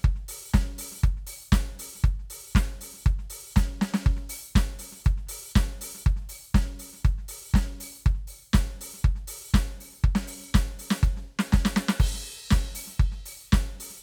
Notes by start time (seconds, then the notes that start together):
0.01 kick, hi-hat pedal
0.05 closed hi-hat
0.16 snare
0.21 snare
0.29 open hi-hat
0.50 snare, closed hi-hat, hi-hat pedal
0.54 kick
0.62 snare
0.79 open hi-hat
0.92 snare
0.96 snare, hi-hat pedal
1.04 kick, closed hi-hat
1.17 snare
1.27 open hi-hat
1.49 kick, snare, hi-hat pedal
1.53 closed hi-hat
1.60 snare
1.66 snare
1.70 kick
1.79 open hi-hat
1.95 snare
2.01 kick, hi-hat pedal
2.06 closed hi-hat
2.19 snare
2.25 snare
2.30 open hi-hat
2.52 kick, snare, hi-hat pedal
2.57 closed hi-hat
2.81 open hi-hat
2.93 snare
3.03 kick, closed hi-hat, hi-hat pedal
3.19 snare
3.30 open hi-hat
3.54 closed hi-hat, kick, snare, hi-hat pedal
3.82 snare
3.94 snare
4.04 kick, closed hi-hat, hi-hat pedal
4.17 snare
4.30 open hi-hat
4.53 kick, snare, closed hi-hat, hi-hat pedal
4.79 open hi-hat
4.92 snare
5.01 closed hi-hat, hi-hat pedal
5.06 kick
5.17 snare
5.27 open hi-hat, kick
5.51 hi-hat pedal
5.56 kick, snare, closed hi-hat
5.63 snare
5.73 snare
5.81 open hi-hat
5.95 snare
6.00 snare, hi-hat pedal
6.06 closed hi-hat, kick
6.16 snare
6.22 snare
6.29 open hi-hat
6.51 kick, snare, hi-hat pedal
6.55 closed hi-hat
6.70 snare
6.79 open hi-hat
6.93 snare
6.99 hi-hat pedal
7.05 closed hi-hat, kick
7.18 snare
7.29 open hi-hat
7.51 kick, hi-hat pedal
7.56 closed hi-hat, snare
7.81 open hi-hat
8.03 closed hi-hat, kick, hi-hat pedal
8.15 snare
8.19 snare
8.28 open hi-hat
8.52 closed hi-hat, kick, snare, hi-hat pedal
8.61 snare
8.81 open hi-hat
8.94 snare
8.99 hi-hat pedal
9.05 kick, closed hi-hat
9.16 snare
9.28 open hi-hat
9.51 kick, snare, closed hi-hat, hi-hat pedal
9.81 open hi-hat
9.92 snare
9.99 hi-hat pedal
10.04 kick, closed hi-hat
10.15 snare
10.28 open hi-hat
10.49 hi-hat pedal
10.54 closed hi-hat, kick, snare
10.79 open hi-hat
10.91 snare
10.97 snare, hi-hat pedal
11.03 kick, closed hi-hat
11.17 snare
11.39 snare
11.51 kick, snare, hi-hat pedal
11.65 snare
11.76 snare
11.89 snare
11.98 kick, hi-hat pedal, crash
12.14 snare
12.51 kick, snare
12.58 snare
12.75 open hi-hat
12.87 snare
12.96 hi-hat pedal
13.00 kick, closed hi-hat
13.12 snare
13.26 open hi-hat
13.48 hi-hat pedal
13.53 kick, snare, closed hi-hat
13.61 snare
13.80 open hi-hat
13.91 snare
13.98 hi-hat pedal